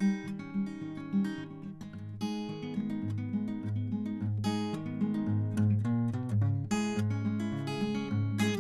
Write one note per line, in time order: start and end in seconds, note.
0.01 0.24 G3
0.01 0.34 D#4
0.24 0.78 D#3
0.24 0.53 G3
0.40 0.94 C#4
0.55 1.09 G3
0.67 1.03 D#4
0.82 1.36 D#3
0.98 1.48 C#4
1.14 1.64 G3
1.25 1.48 D#4
1.39 2.17 D#3
1.52 1.71 C#4
1.64 1.75 G3
1.84 2.04 G#3
1.95 2.05 G#2
2.21 2.58 G#3
2.21 2.52 D#4
2.21 2.79 G#4
2.50 3.68 D#3
2.63 3.13 B3
2.78 2.89 G#3
2.90 3.14 D#4
3.03 3.24 G#2
3.19 3.71 B3
3.34 3.90 G#3
3.49 3.72 D#4
3.64 4.19 G#2
3.77 4.30 B3
3.93 4.40 G#3
4.06 4.31 D#4
4.22 5.25 G#2
4.45 4.97 G#3
4.45 4.79 D#4
4.45 4.79 G#4
4.75 5.69 D#3
4.87 5.68 B3
5.02 5.73 G#3
5.15 5.60 D#4
5.28 5.54 G#2
5.58 5.84 G#2
5.86 6.13 A#2
6.15 6.30 B2
6.31 6.95 G#2
6.43 6.68 C#3
6.72 7.24 G#3
6.72 7.03 E4
6.72 7.05 G#4
6.97 8.07 G#2
7.11 7.87 C#4
7.27 7.78 G#3
7.41 7.88 E4
7.54 8.38 C#3
7.68 8.14 G#4
7.83 8.02 G#3
7.95 8.52 C#4
8.12 8.53 G#2
8.39 8.57 G#3
8.39 8.57 E4
8.39 8.59 G#4